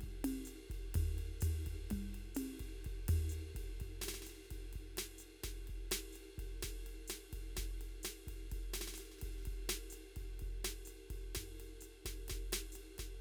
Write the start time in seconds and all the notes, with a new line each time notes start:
0.01 kick, ride
0.09 kick
0.24 high tom, ride
0.45 hi-hat pedal, ride
0.70 kick, ride
0.75 kick
0.95 kick, floor tom, ride
1.18 ride
1.41 floor tom, hi-hat pedal, ride
1.66 kick, ride
1.72 kick
1.91 kick, mid tom, ride
1.99 kick
2.15 ride
2.35 hi-hat pedal, high tom, ride
2.60 kick, ride
2.66 kick
2.85 kick, ride
2.92 kick
3.08 floor tom, ride
3.29 hi-hat pedal, ride
3.55 kick, ride
3.61 kick
3.80 kick, ride
3.87 kick
4.02 snare, ride
4.08 snare
4.14 snare
4.22 snare, hi-hat pedal
4.27 snare, ride
4.35 snare
4.39 snare
4.44 snare
4.49 kick, snare, ride
4.53 snare
4.57 snare
4.73 kick, ride
4.81 kick
4.97 snare, ride
5.18 hi-hat pedal, ride
5.44 kick, snare, ride
5.67 kick, ride
5.91 snare, ride
6.13 hi-hat pedal, ride
6.38 kick, ride
6.44 kick
6.63 kick, snare, ride
6.69 kick
6.81 snare
6.86 ride
7.08 snare, hi-hat pedal, ride
7.33 kick, ride
7.38 kick
7.56 kick, snare, hi-hat pedal, ride
7.63 kick
7.81 ride
8.03 snare, hi-hat pedal, ride
8.28 kick, ride
8.33 kick
8.50 kick, hi-hat pedal, ride
8.57 kick
8.74 snare, ride
8.81 snare
8.88 snare
8.94 snare, hi-hat pedal
8.98 snare, ride
9.05 snare
9.12 snare
9.19 snare, ride
9.23 kick, snare
9.28 kick
9.32 snare
9.38 snare
9.41 snare
9.43 snare, hi-hat pedal, ride
9.47 kick
9.52 kick
9.69 snare, ride
9.90 hi-hat pedal, ride
9.94 snare
10.16 kick, ride
10.22 kick
10.40 kick, ride
10.48 kick
10.65 snare, ride
10.85 hi-hat pedal, ride
10.96 snare
11.10 kick, ride
11.16 kick
11.35 kick, snare, ride
11.42 kick
11.60 ride
11.81 hi-hat pedal, ride
12.06 kick, snare, ride
12.28 kick, snare, ride
12.36 kick
12.53 snare, ride
12.72 hi-hat pedal, ride
12.98 kick, snare, ride